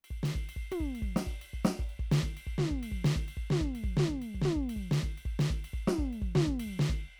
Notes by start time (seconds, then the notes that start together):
0.04 ride
0.10 kick
0.23 snare, ride
0.35 kick
0.49 ride
0.56 kick
0.71 floor tom, ride
0.80 kick
0.95 ride
1.02 kick
1.16 snare, ride
1.26 kick
1.41 ride
1.53 kick
1.64 snare, ride
1.79 kick
1.89 ride
1.99 kick
2.12 snare, ride
2.23 kick
2.37 ride
2.47 kick
2.58 snare, floor tom
2.71 kick
2.83 ride
2.92 kick
3.04 snare, ride
3.16 kick
3.28 ride
3.37 kick
3.50 snare, floor tom
3.61 kick
3.75 ride
3.84 kick
3.97 snare, floor tom
4.09 kick
4.22 ride
4.34 kick
4.42 snare, floor tom
4.56 kick
4.69 ride
4.76 kick
4.91 snare, ride
5.03 kick
5.17 ride
5.25 kick
5.39 snare, ride
5.50 kick
5.64 ride
5.73 kick
5.87 snare, floor tom
5.98 kick
6.12 ride
6.22 kick
6.35 snare, floor tom
6.47 kick
6.59 ride
6.66 kick
6.79 snare, ride
6.89 kick